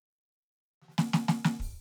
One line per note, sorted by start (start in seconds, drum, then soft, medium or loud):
0.83 snare soft
0.89 snare soft
0.89 hi-hat pedal soft
0.99 snare loud
1.14 snare loud
1.29 snare loud
1.45 snare loud
1.61 open hi-hat medium
1.61 kick medium